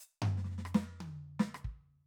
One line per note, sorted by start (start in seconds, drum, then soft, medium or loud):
0.00 hi-hat pedal medium
0.22 floor tom loud
0.37 snare soft
0.44 snare soft
0.51 snare soft
0.58 snare soft
0.65 cross-stick medium
0.74 snare loud
1.00 closed hi-hat soft
1.00 high tom medium
1.39 snare medium
1.54 cross-stick medium
1.64 kick soft